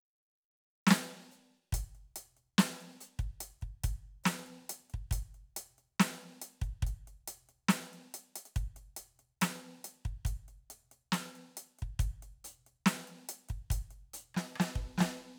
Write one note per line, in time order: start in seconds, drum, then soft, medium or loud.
0.87 snare loud
0.91 snare loud
1.31 hi-hat pedal soft
1.72 kick medium
1.72 closed hi-hat loud
1.95 closed hi-hat soft
2.16 closed hi-hat loud
2.37 closed hi-hat soft
2.58 snare loud
2.58 closed hi-hat medium
2.81 closed hi-hat soft
3.01 closed hi-hat medium
3.19 kick soft
3.19 closed hi-hat soft
3.40 closed hi-hat loud
3.61 kick soft
3.61 closed hi-hat soft
3.84 kick medium
3.84 open hi-hat loud
4.24 snare loud
4.24 closed hi-hat medium
4.24 hi-hat pedal medium
4.46 closed hi-hat soft
4.69 closed hi-hat loud
4.90 kick soft
4.90 closed hi-hat soft
5.11 kick medium
5.11 closed hi-hat loud
5.34 closed hi-hat soft
5.56 closed hi-hat loud
5.78 closed hi-hat soft
6.00 snare loud
6.00 closed hi-hat medium
6.21 closed hi-hat soft
6.42 closed hi-hat loud
6.61 kick soft
6.61 closed hi-hat soft
6.82 kick medium
6.87 closed hi-hat medium
7.07 closed hi-hat soft
7.28 closed hi-hat loud
7.49 closed hi-hat soft
7.68 snare loud
7.68 closed hi-hat medium
7.93 closed hi-hat soft
8.14 closed hi-hat loud
8.36 closed hi-hat loud
8.45 closed hi-hat medium
8.56 kick medium
8.56 closed hi-hat medium
8.76 closed hi-hat soft
8.97 closed hi-hat loud
9.19 closed hi-hat soft
9.41 snare loud
9.41 closed hi-hat loud
9.84 closed hi-hat loud
10.05 kick soft
10.05 closed hi-hat soft
10.25 kick medium
10.25 closed hi-hat medium
10.48 closed hi-hat soft
10.70 closed hi-hat medium
10.91 closed hi-hat soft
11.12 snare loud
11.12 closed hi-hat medium
11.35 closed hi-hat soft
11.57 closed hi-hat loud
11.79 kick soft
11.79 closed hi-hat soft
11.99 kick medium
11.99 closed hi-hat medium
12.22 closed hi-hat soft
12.44 closed hi-hat loud
12.66 closed hi-hat soft
12.86 snare loud
12.86 closed hi-hat medium
12.94 snare soft
13.07 closed hi-hat soft
13.29 closed hi-hat loud
13.49 kick soft
13.49 closed hi-hat soft
13.70 kick medium
13.70 closed hi-hat loud
13.91 closed hi-hat soft
14.13 closed hi-hat loud
14.34 cross-stick soft
14.34 snare medium
14.56 cross-stick medium
14.60 snare loud
14.75 kick soft
14.98 snare medium
15.00 snare loud